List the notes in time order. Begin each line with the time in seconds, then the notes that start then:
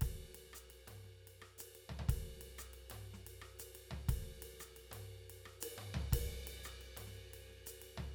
0.01 kick, ride
0.21 snare
0.34 ride
0.52 cross-stick, snare, hi-hat pedal
0.70 ride
0.87 mid tom, ride
1.04 snare
1.27 ride
1.41 cross-stick, snare
1.58 hi-hat pedal, ride
1.75 ride
1.89 floor tom
1.99 floor tom
2.08 kick, ride
2.29 snare
2.41 ride
2.57 cross-stick, snare, hi-hat pedal
2.73 ride
2.90 mid tom, ride
3.13 snare
3.26 ride
3.41 cross-stick
3.52 snare
3.59 hi-hat pedal, ride
3.75 ride
3.91 floor tom
4.08 kick, ride
4.22 snare
4.42 ride
4.59 cross-stick, snare, hi-hat pedal
4.76 ride
4.91 mid tom, ride
5.15 snare
5.30 ride
5.45 cross-stick, snare
5.60 hi-hat pedal, ride
5.78 mid tom
5.94 floor tom
6.12 kick, snare, ride
6.47 ride
6.63 cross-stick, snare, hi-hat pedal
6.81 ride
6.96 mid tom, ride
7.06 snare
7.13 hi-hat pedal
7.33 ride
7.49 snare
7.66 hi-hat pedal, ride
7.82 ride
7.97 floor tom